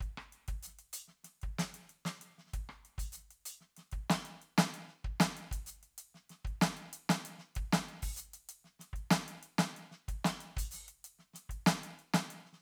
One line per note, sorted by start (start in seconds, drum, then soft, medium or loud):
0.01 kick medium
0.01 closed hi-hat soft
0.18 cross-stick medium
0.33 closed hi-hat soft
0.48 kick medium
0.48 open hi-hat soft
0.63 hi-hat pedal medium
0.68 snare soft
0.79 closed hi-hat soft
0.94 closed hi-hat medium
1.08 snare soft
1.24 snare soft
1.24 closed hi-hat soft
1.42 kick medium
1.42 closed hi-hat soft
1.59 snare loud
1.75 closed hi-hat soft
1.90 closed hi-hat soft
2.06 snare medium
2.22 closed hi-hat soft
2.39 snare soft
2.44 snare soft
2.47 snare soft
2.54 kick medium
2.54 closed hi-hat soft
2.70 cross-stick medium
2.86 closed hi-hat soft
2.99 open hi-hat medium
2.99 kick medium
3.13 hi-hat pedal medium
3.17 snare soft
3.31 closed hi-hat soft
3.46 closed hi-hat medium
3.61 snare soft
3.77 snare soft
3.77 closed hi-hat soft
3.92 kick medium
3.92 closed hi-hat soft
4.10 snare loud
4.26 closed hi-hat soft
4.42 closed hi-hat soft
4.58 snare loud
4.75 closed hi-hat soft
4.88 snare soft
5.05 kick medium
5.05 closed hi-hat soft
5.21 snare loud
5.37 closed hi-hat soft
5.52 kick medium
5.52 open hi-hat medium
5.67 snare soft
5.67 hi-hat pedal medium
5.83 closed hi-hat soft
5.99 closed hi-hat medium
6.15 snare soft
6.30 snare soft
6.30 closed hi-hat soft
6.45 kick medium
6.45 closed hi-hat soft
6.62 snare loud
6.77 closed hi-hat soft
6.94 closed hi-hat medium
7.10 snare loud
7.26 closed hi-hat medium
7.39 snare soft
7.56 kick medium
7.56 closed hi-hat soft
7.73 snare loud
7.89 closed hi-hat soft
7.93 snare soft
8.03 open hi-hat medium
8.03 kick medium
8.17 hi-hat pedal loud
8.34 closed hi-hat medium
8.49 closed hi-hat medium
8.65 snare soft
8.80 snare soft
8.80 closed hi-hat soft
8.94 kick soft
8.94 closed hi-hat soft
9.11 snare loud
9.29 closed hi-hat soft
9.43 closed hi-hat soft
9.59 snare loud
9.77 closed hi-hat soft
9.92 snare soft
10.09 kick medium
10.09 closed hi-hat soft
10.25 snare medium
10.41 closed hi-hat soft
10.57 open hi-hat medium
10.57 kick medium
10.72 snare soft
10.72 hi-hat pedal medium
10.89 closed hi-hat soft
11.05 closed hi-hat medium
11.19 snare soft
11.34 snare soft
11.34 closed hi-hat medium
11.50 kick soft
11.50 closed hi-hat soft
11.67 snare loud
11.84 closed hi-hat soft
12.00 closed hi-hat soft
12.14 snare loud
12.31 closed hi-hat soft
12.46 snare soft
12.53 snare soft
12.57 snare soft